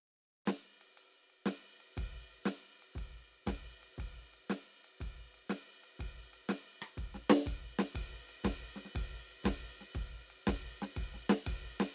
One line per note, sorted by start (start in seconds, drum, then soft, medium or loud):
0.45 snare loud
0.45 hi-hat pedal medium
0.45 ride medium
0.81 ride medium
0.97 ride medium
1.30 ride soft
1.46 snare loud
1.46 hi-hat pedal medium
1.46 ride loud
1.80 ride soft
1.97 kick medium
1.97 ride loud
2.45 snare medium
2.45 hi-hat pedal medium
2.45 ride medium
2.82 ride soft
2.95 kick soft
2.95 ride medium
3.33 ride soft
3.46 kick medium
3.46 snare medium
3.46 hi-hat pedal medium
3.46 ride loud
3.83 ride soft
3.98 kick soft
3.98 ride medium
4.33 ride soft
4.50 snare medium
4.50 hi-hat pedal medium
4.50 ride medium
4.84 ride soft
5.00 kick soft
5.00 ride medium
5.34 ride soft
5.49 snare medium
5.49 hi-hat pedal medium
5.49 ride loud
5.83 ride medium
5.99 kick soft
5.99 ride medium
6.33 ride medium
6.48 snare medium
6.48 hi-hat pedal medium
6.48 ride loud
6.82 cross-stick medium
6.97 kick medium
6.97 ride medium
7.14 snare soft
7.29 snare loud
7.46 kick medium
7.46 ride loud
7.79 snare loud
7.79 ride medium
7.95 kick medium
7.95 ride loud
8.29 ride medium
8.43 kick medium
8.43 snare loud
8.43 hi-hat pedal soft
8.43 ride loud
8.76 snare soft
8.85 snare soft
8.91 hi-hat pedal soft
8.95 kick medium
8.95 snare soft
8.95 ride loud
9.31 ride soft
9.43 kick medium
9.43 snare loud
9.43 hi-hat pedal medium
9.43 ride loud
9.81 snare soft
9.95 kick medium
9.95 ride medium
10.30 ride medium
10.47 kick medium
10.47 snare loud
10.47 hi-hat pedal medium
10.47 ride loud
10.82 snare medium
10.93 kick medium
10.93 hi-hat pedal soft
10.93 ride loud
11.14 snare soft
11.29 snare loud
11.46 kick medium
11.46 hi-hat pedal soft
11.46 ride loud
11.80 snare loud
11.80 ride loud